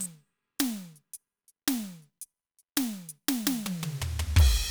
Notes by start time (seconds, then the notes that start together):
0.01 closed hi-hat
0.59 snare, closed hi-hat
0.96 closed hi-hat
1.14 closed hi-hat
1.48 closed hi-hat
1.68 snare, closed hi-hat
2.02 closed hi-hat
2.22 closed hi-hat
2.59 closed hi-hat
2.77 snare, closed hi-hat
3.09 closed hi-hat
3.29 snare
3.47 snare
3.66 high tom
3.83 mid tom
4.02 floor tom
4.19 floor tom
4.36 kick, ride, crash